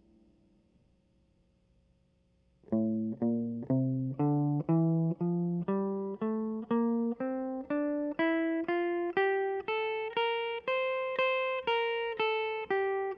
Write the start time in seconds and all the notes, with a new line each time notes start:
2.74 A2
3.23 A#2
3.71 C3
4.21 D3
4.70 E3
5.21 F3
5.69 G3
6.22 A3
6.71 A#3
7.21 C4
7.71 D4
8.19 E4
8.69 F4
9.17 G4
9.68 A4
10.17 A#4
10.68 C5
11.19 C5
11.68 A#4
12.20 A4
12.71 G4